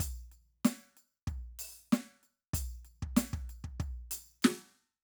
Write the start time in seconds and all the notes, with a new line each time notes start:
0.01 kick, percussion
0.33 percussion
0.66 snare, percussion
0.98 percussion
1.28 kick, percussion
1.60 percussion
1.94 snare, percussion
2.24 percussion
2.55 kick, percussion
2.86 percussion
3.03 kick
3.18 snare, percussion
3.34 kick
3.50 percussion
3.65 kick
3.81 kick, percussion
4.12 percussion
4.43 snare, percussion